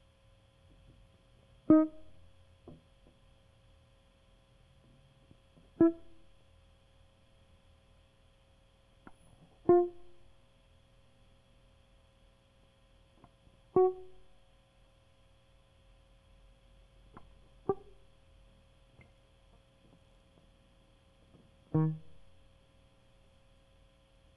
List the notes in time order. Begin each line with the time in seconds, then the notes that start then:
1.71 D#4
5.81 E4
9.69 F4
13.77 F#4
17.70 G4
21.76 D#3